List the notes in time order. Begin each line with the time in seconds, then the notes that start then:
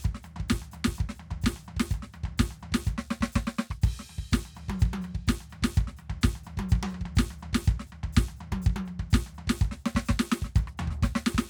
0.01 kick, floor tom, hi-hat pedal
0.15 snare
0.23 floor tom, hi-hat pedal
0.36 kick, floor tom
0.49 kick, snare, hi-hat pedal
0.62 floor tom
0.71 floor tom, hi-hat pedal
0.84 kick, snare
0.94 floor tom, hi-hat pedal
1.00 kick
1.09 snare
1.15 hi-hat pedal
1.20 floor tom
1.31 kick, floor tom
1.42 kick, hi-hat pedal
1.46 snare
1.56 floor tom
1.63 hi-hat pedal
1.68 floor tom
1.76 kick, snare
1.90 kick, hi-hat pedal
1.94 floor tom
2.02 snare
2.12 floor tom, hi-hat pedal
2.23 kick, floor tom
2.38 kick, snare, hi-hat pedal
2.51 floor tom
2.59 floor tom, hi-hat pedal
2.72 kick, snare
2.85 kick, floor tom, hi-hat pedal
2.98 snare
3.06 hi-hat pedal
3.10 snare
3.21 kick, snare
3.32 kick, snare, hi-hat pedal
3.47 snare
3.55 snare, hi-hat pedal
3.70 kick, cross-stick
3.82 kick, hi-hat pedal, crash
3.99 snare
4.05 hi-hat pedal
4.09 floor tom
4.18 kick
4.32 kick, snare, hi-hat pedal
4.45 floor tom
4.55 floor tom, hi-hat pedal
4.68 kick, high tom
4.79 kick, floor tom, hi-hat pedal
4.93 high tom
5.01 floor tom, hi-hat pedal
5.15 kick, floor tom
5.27 kick, snare, hi-hat pedal
5.41 floor tom
5.50 floor tom, hi-hat pedal
5.62 kick, snare
5.74 kick, floor tom, hi-hat pedal
5.87 snare
5.96 floor tom, hi-hat pedal
6.10 kick, floor tom
6.21 kick, snare, hi-hat pedal
6.35 floor tom
6.43 floor tom, hi-hat pedal
6.57 kick, high tom
6.69 kick, hi-hat pedal
6.73 floor tom
6.83 high tom
6.89 hi-hat pedal
6.94 floor tom
7.01 kick
7.05 floor tom
7.15 kick, snare, hi-hat pedal
7.30 floor tom
7.38 hi-hat pedal
7.43 floor tom
7.53 kick, snare
7.64 kick, hi-hat pedal
7.69 floor tom
7.79 snare
7.87 hi-hat pedal
7.92 floor tom
8.03 kick, floor tom
8.13 hi-hat pedal
8.17 kick, snare
8.28 floor tom
8.36 hi-hat pedal
8.40 floor tom
8.52 kick, high tom
8.62 hi-hat pedal
8.66 kick
8.76 high tom
8.85 floor tom, hi-hat pedal
8.99 kick, floor tom
9.10 kick, snare, hi-hat pedal
9.26 floor tom
9.34 hi-hat pedal
9.38 floor tom
9.47 kick, snare
9.58 kick, hi-hat pedal
9.62 floor tom
9.71 snare
9.79 hi-hat pedal
9.86 snare
9.95 kick, snare
10.05 snare, hi-hat pedal
10.10 kick
10.19 snare
10.29 snare, hi-hat pedal
10.42 kick, snare
10.55 kick, floor tom, hi-hat pedal
10.67 cross-stick
10.77 floor tom, hi-hat pedal
10.87 kick, snare
11.03 kick, snare, hi-hat pedal
11.15 snare
11.25 snare, hi-hat pedal
11.34 kick, snare